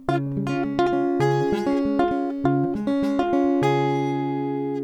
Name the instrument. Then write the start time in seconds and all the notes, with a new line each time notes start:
acoustic guitar
0.10 C#3 F4
0.39 G3
0.48 C#4 F4
0.67 G#3
0.80 F4
0.95 C#4
1.22 C#3 G#4
1.54 G#3
1.68 C#4
1.87 G#3
2.01 F4
2.13 C#4
2.46 C#3 F4
2.75 G#3 F4
2.89 C#4
3.05 G#3
3.20 F4
3.35 C#4
3.64 C#3 G#4